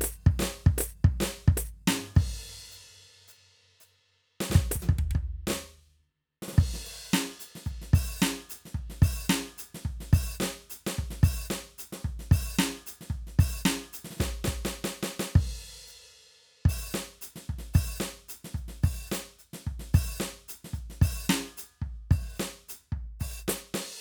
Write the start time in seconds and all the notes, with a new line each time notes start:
0.01 high tom
0.04 high tom
0.26 kick
0.39 snare
0.42 snare
0.66 kick
0.78 high tom
0.80 high tom
1.04 kick
1.20 snare
1.22 snare
1.48 kick
1.57 high tom
1.87 snare, floor tom
2.16 kick, crash
2.72 hi-hat pedal
3.28 hi-hat pedal
3.80 hi-hat pedal
4.41 snare
4.50 kick, snare
4.55 kick
4.71 high tom
4.76 kick
4.82 high tom
4.89 kick
4.99 kick, mid tom
5.11 mid tom
5.15 kick
5.43 kick, snare
5.50 snare
6.42 snare
6.48 snare, hi-hat pedal
6.53 snare
6.57 kick, crash
6.74 snare
6.85 open hi-hat
7.12 snare, hi-hat pedal
7.39 closed hi-hat
7.55 snare
7.65 closed hi-hat, kick
7.82 snare
7.93 open hi-hat, kick
8.20 snare, hi-hat pedal
8.49 closed hi-hat
8.65 snare
8.75 kick
8.90 snare
9.02 open hi-hat, kick
9.25 hi-hat pedal
9.30 snare
9.58 closed hi-hat
9.75 snare
9.85 kick
10.00 snare
10.13 open hi-hat, kick
10.34 hi-hat pedal
10.40 snare
10.42 snare
10.70 closed hi-hat
10.87 snare
10.98 kick
11.11 snare
11.23 open hi-hat, kick
11.45 hi-hat pedal
11.50 snare
11.78 closed hi-hat
11.92 snare
12.05 kick
12.19 snare
12.31 open hi-hat, kick
12.56 snare, hi-hat pedal
12.86 closed hi-hat
13.01 snare
13.10 kick, closed hi-hat
13.27 snare
13.39 open hi-hat, kick
13.60 hi-hat pedal
13.65 snare
13.93 closed hi-hat
14.05 snare
14.11 snare
14.17 kick, snare
14.20 snare
14.44 kick, snare
14.65 snare
14.84 snare
15.03 snare
15.20 snare
15.35 kick, crash
15.87 hi-hat pedal
16.65 open hi-hat, kick
16.92 snare, hi-hat pedal
17.21 closed hi-hat
17.36 snare
17.49 kick
17.59 snare
17.73 open hi-hat, kick
17.97 snare, hi-hat pedal
18.28 closed hi-hat
18.44 snare
18.54 closed hi-hat, kick
18.68 snare
18.83 open hi-hat, kick
19.08 snare, hi-hat pedal
19.13 closed hi-hat
19.38 closed hi-hat
19.53 snare
19.67 kick
19.79 snare
19.94 open hi-hat, kick
20.18 snare, hi-hat pedal
20.48 closed hi-hat
20.64 snare
20.73 closed hi-hat, kick
20.90 snare
21.02 open hi-hat, kick
21.25 hi-hat pedal
21.29 snare
21.57 closed hi-hat
21.82 kick
22.10 open hi-hat, kick
22.36 snare, hi-hat pedal
22.69 closed hi-hat
22.92 kick
23.20 open hi-hat, kick
23.39 hi-hat pedal
23.48 snare, high tom
23.74 snare, crash